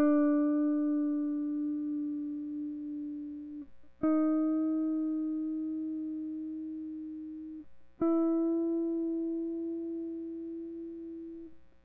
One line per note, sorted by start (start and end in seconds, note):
0.00 3.66 D4
4.04 7.65 D#4
8.02 11.23 E4